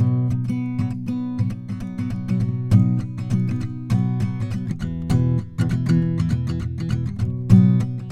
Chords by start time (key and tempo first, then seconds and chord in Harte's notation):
B major, 200 BPM
0.00 B:maj
4.80 E:(1,5)
7.20 B:maj(11)/4